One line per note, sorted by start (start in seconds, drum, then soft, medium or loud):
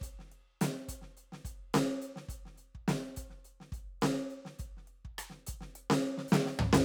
0.01 closed hi-hat medium
0.01 kick soft
0.19 snare soft
0.25 snare soft
0.28 snare soft
0.28 closed hi-hat soft
0.61 closed hi-hat medium
0.61 snare loud
0.88 closed hi-hat medium
0.88 kick soft
1.01 snare soft
1.17 closed hi-hat soft
1.32 snare soft
1.44 closed hi-hat medium
1.44 kick soft
1.73 closed hi-hat medium
1.73 snare loud
2.01 closed hi-hat soft
2.16 snare soft
2.28 closed hi-hat medium
2.28 kick soft
2.45 snare soft
2.54 closed hi-hat soft
2.54 snare soft
2.75 kick soft
2.88 closed hi-hat medium
2.88 snare loud
3.00 snare soft
3.16 closed hi-hat medium
3.16 kick soft
3.29 snare soft
3.44 closed hi-hat soft
3.60 snare soft
3.72 closed hi-hat soft
3.72 kick soft
3.78 kick soft
4.01 closed hi-hat soft
4.01 snare medium
4.13 snare soft
4.30 closed hi-hat soft
4.45 snare soft
4.59 closed hi-hat soft
4.59 kick soft
4.65 kick soft
4.77 snare soft
4.84 snare soft
4.84 closed hi-hat soft
5.05 kick soft
5.18 closed hi-hat medium
5.18 cross-stick medium
5.30 snare soft
5.46 closed hi-hat medium
5.46 kick soft
5.54 kick soft
5.60 snare soft
5.75 hi-hat pedal soft
5.75 open hi-hat medium
5.90 snare loud
6.17 snare soft
6.27 kick soft
6.27 hi-hat pedal medium
6.32 snare loud
6.46 snare soft
6.46 hi-hat pedal soft
6.59 kick soft
6.59 floor tom loud
6.73 snare loud